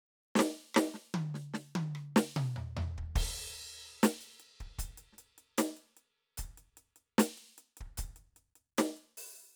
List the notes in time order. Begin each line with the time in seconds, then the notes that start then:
0.35 snare
0.39 snare
0.74 cross-stick, snare
0.94 snare
1.14 high tom
1.34 snare
1.54 snare
1.75 high tom
1.95 cross-stick
2.16 snare
2.36 mid tom
2.56 floor tom
2.77 floor tom
2.98 kick
3.16 kick, crash
4.03 closed hi-hat, snare
4.21 closed hi-hat
4.40 closed hi-hat
4.60 kick, closed hi-hat
4.79 closed hi-hat, kick
4.98 closed hi-hat
5.12 snare
5.18 closed hi-hat
5.38 closed hi-hat
5.58 closed hi-hat, snare
5.77 closed hi-hat
5.97 closed hi-hat
6.37 closed hi-hat, kick
6.58 closed hi-hat
6.77 closed hi-hat
6.96 closed hi-hat
7.18 closed hi-hat, snare
7.37 closed hi-hat
7.58 closed hi-hat
7.77 kick, closed hi-hat
7.97 closed hi-hat, kick
8.16 closed hi-hat
8.36 closed hi-hat
8.55 closed hi-hat
8.78 closed hi-hat, snare
8.97 closed hi-hat
9.17 open hi-hat